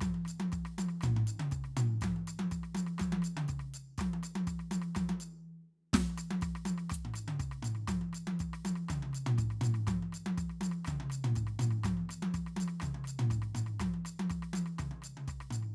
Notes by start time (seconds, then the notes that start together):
0.01 kick, cross-stick, high tom, percussion
0.15 high tom
0.17 high tom
0.25 cross-stick, percussion
0.40 high tom
0.52 kick, cross-stick, percussion
0.65 cross-stick
0.78 high tom, percussion
0.89 cross-stick
1.01 kick, cross-stick, floor tom, percussion
1.17 floor tom
1.27 cross-stick, percussion
1.40 mid tom
1.52 kick, cross-stick, percussion
1.64 cross-stick
1.77 floor tom, percussion
2.01 kick, cross-stick, high tom, percussion
2.12 high tom
2.16 high tom
2.20 high tom
2.28 cross-stick, percussion
2.39 high tom
2.52 kick, cross-stick, percussion
2.64 cross-stick
2.75 high tom, percussion
2.87 cross-stick
2.99 kick, cross-stick, high tom, percussion
3.13 high tom
3.22 cross-stick, percussion
3.37 mid tom
3.48 kick, cross-stick, percussion
3.60 cross-stick
3.74 percussion
3.98 kick, cross-stick, high tom, percussion
4.14 high tom
4.18 high tom
4.23 cross-stick, percussion
4.36 high tom
4.47 kick, cross-stick, percussion
4.60 cross-stick
4.71 high tom, percussion
4.82 cross-stick
4.95 kick, cross-stick, high tom, percussion
5.09 high tom
5.20 percussion
5.94 kick, snare, high tom, percussion
6.10 high tom
6.18 cross-stick, percussion
6.31 high tom
6.42 kick, cross-stick, percussion
6.56 cross-stick
6.66 high tom, percussion
6.78 cross-stick
6.90 kick, cross-stick, percussion, floor tom
7.05 floor tom
7.14 cross-stick, percussion
7.28 mid tom
7.40 kick, cross-stick, percussion
7.52 cross-stick
7.63 floor tom, percussion
7.75 cross-stick
7.88 kick, cross-stick, high tom, percussion
8.02 high tom
8.13 cross-stick, percussion
8.27 high tom
8.40 kick, cross-stick, percussion
8.54 cross-stick
8.65 high tom, percussion
8.76 cross-stick
8.89 kick, cross-stick, mid tom, percussion
9.03 mid tom
9.13 cross-stick, percussion
9.27 floor tom
9.38 kick, cross-stick, percussion
9.51 cross-stick
9.61 floor tom, percussion
9.74 cross-stick
9.87 kick, cross-stick, high tom, percussion
10.03 high tom
10.13 cross-stick, percussion
10.26 high tom
10.38 kick, cross-stick, percussion
10.50 cross-stick
10.61 high tom, percussion
10.72 cross-stick
10.85 kick, cross-stick, mid tom, percussion
11.00 mid tom
11.10 cross-stick, percussion
11.24 floor tom
11.36 kick, cross-stick, percussion
11.47 cross-stick
11.60 floor tom, percussion
11.71 cross-stick
11.84 kick, cross-stick, high tom, percussion
11.97 high tom
12.00 high tom
12.02 high tom
12.10 cross-stick, percussion
12.23 high tom
12.34 kick, cross-stick, percussion
12.47 cross-stick
12.57 high tom, percussion
12.68 cross-stick
12.80 kick, cross-stick, mid tom, percussion
12.95 mid tom
13.05 cross-stick, percussion
13.19 floor tom
13.31 kick, cross-stick, percussion
13.42 cross-stick
13.55 floor tom, percussion
13.67 cross-stick
13.80 kick, cross-stick, high tom, percussion
13.94 high tom
14.05 cross-stick, percussion
14.20 high tom
14.30 kick, cross-stick, percussion
14.43 cross-stick
14.54 high tom, percussion
14.66 cross-stick
14.79 kick, cross-stick, mid tom, percussion
14.91 mid tom
15.02 cross-stick, percussion
15.17 mid tom
15.28 kick, cross-stick, percussion
15.41 cross-stick
15.51 floor tom, percussion
15.63 cross-stick